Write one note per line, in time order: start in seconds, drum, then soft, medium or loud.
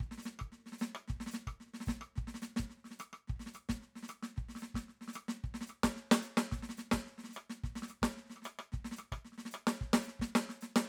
0.01 kick soft
0.01 snare soft
0.07 kick soft
0.12 snare soft
0.19 snare soft
0.23 snare soft
0.23 hi-hat pedal soft
0.40 kick soft
0.40 cross-stick medium
0.53 snare soft
0.59 snare soft
0.64 snare soft
0.67 snare soft
0.73 snare soft
0.79 snare medium
0.79 hi-hat pedal soft
0.96 cross-stick medium
1.09 kick soft
1.09 snare soft
1.17 kick soft
1.17 snare soft
1.27 snare medium
1.32 snare medium
1.32 hi-hat pedal medium
1.48 kick soft
1.48 cross-stick medium
1.61 snare soft
1.67 snare soft
1.72 snare soft
1.74 snare soft
1.81 snare soft
1.87 kick soft
1.87 snare medium
1.87 hi-hat pedal soft
1.94 kick soft
2.02 cross-stick medium
2.16 kick soft
2.16 snare soft
2.25 kick soft
2.25 snare soft
2.35 snare soft
2.42 snare soft
2.42 hi-hat pedal soft
2.57 kick soft
2.57 snare medium
2.66 kick soft
2.71 snare soft
2.78 snare soft
2.84 snare soft
2.91 snare soft
3.00 cross-stick medium
3.00 hi-hat pedal soft
3.14 cross-stick medium
3.28 kick soft
3.28 snare soft
3.36 kick soft
3.36 snare soft
3.40 snare soft
3.47 snare soft
3.55 cross-stick medium
3.55 hi-hat pedal soft
3.70 kick soft
3.70 snare medium
3.76 kick soft
3.82 snare soft
3.88 snare soft
3.94 snare soft
3.96 snare soft
4.03 snare soft
4.09 cross-stick medium
4.09 hi-hat pedal soft
4.23 snare medium
4.37 kick soft
4.37 snare soft
4.45 snare soft
4.49 snare soft
4.56 snare soft
4.56 hi-hat pedal soft
4.63 snare soft
4.75 kick soft
4.75 snare medium
4.89 snare soft
4.95 snare soft
5.00 snare soft
5.02 snare soft
5.09 snare soft
5.14 cross-stick medium
5.14 hi-hat pedal medium
5.29 snare medium
5.44 kick soft
5.44 snare soft
5.52 kick soft
5.52 snare soft
5.62 snare soft
5.68 cross-stick soft
5.68 hi-hat pedal soft
5.84 kick soft
5.84 snare loud
5.97 snare soft
6.12 snare loud
6.23 snare soft
6.23 hi-hat pedal soft
6.38 snare loud
6.52 kick soft
6.52 snare soft
6.60 kick soft
6.60 snare soft
6.70 snare soft
6.78 snare soft
6.78 hi-hat pedal soft
6.92 kick soft
6.92 snare medium
6.98 snare soft
7.07 snare soft
7.12 snare soft
7.17 snare soft
7.19 snare soft
7.25 snare soft
7.30 snare soft
7.34 cross-stick medium
7.34 hi-hat pedal soft
7.50 snare soft
7.64 kick soft
7.64 snare soft
7.70 kick soft
7.76 snare soft
7.83 snare medium
7.89 cross-stick soft
7.89 hi-hat pedal soft
8.03 kick soft
8.03 snare medium
8.18 snare soft
8.26 snare soft
8.31 snare soft
8.37 cross-stick soft
8.43 cross-stick medium
8.43 snare soft
8.43 hi-hat pedal soft
8.60 cross-stick medium
8.73 kick soft
8.73 snare soft
8.81 kick soft
8.85 snare soft
8.92 snare soft
8.97 cross-stick medium
8.97 hi-hat pedal soft
9.13 kick soft
9.13 cross-stick medium
9.18 kick soft
9.26 snare soft
9.33 snare soft
9.39 snare soft
9.46 snare soft
9.52 cross-stick medium
9.52 hi-hat pedal medium
9.68 snare medium
9.82 kick soft
9.82 snare soft
9.94 snare loud
10.03 hi-hat pedal soft
10.08 snare soft
10.20 kick soft
10.20 snare medium
10.36 snare loud
10.50 snare soft
10.62 snare soft
10.62 hi-hat pedal soft
10.77 snare loud